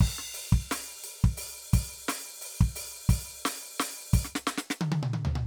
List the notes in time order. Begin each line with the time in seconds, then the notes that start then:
0.01 kick, crash
0.19 snare
0.35 open hi-hat
0.53 kick
0.72 open hi-hat, snare
0.80 snare
1.05 open hi-hat
1.25 kick
1.38 open hi-hat
1.74 open hi-hat, kick
2.09 open hi-hat, snare
2.42 open hi-hat
2.62 kick
2.76 open hi-hat
3.10 open hi-hat, kick
3.46 open hi-hat, snare
3.81 open hi-hat, snare
4.14 open hi-hat, kick
4.25 snare, hi-hat pedal
4.36 snare
4.48 snare
4.52 hi-hat pedal
4.59 snare
4.71 snare, hi-hat pedal
4.82 high tom
4.93 high tom
5.04 mid tom
5.14 high tom
5.26 floor tom
5.36 mid tom